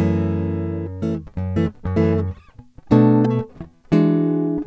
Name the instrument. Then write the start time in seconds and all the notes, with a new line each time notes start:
acoustic guitar
0.00 F#2 E3 A3 C#4
1.03 E3 A3 C#4
1.39 F#2
1.58 E3 A3 C#4
1.87 F#2
1.98 E3 A3 C#4
2.92 B2 A3 D4 F#4
3.93 E3 G#3 D4 F#4